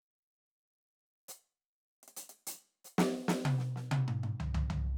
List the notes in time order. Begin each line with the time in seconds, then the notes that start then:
1.28 hi-hat pedal
2.03 closed hi-hat
2.08 closed hi-hat
2.16 closed hi-hat
2.29 closed hi-hat
2.47 open hi-hat
2.84 hi-hat pedal
2.98 snare
3.28 snare
3.45 high tom
3.58 snare
3.76 snare
3.91 high tom
4.08 mid tom
4.23 mid tom
4.40 floor tom
4.54 floor tom
4.70 floor tom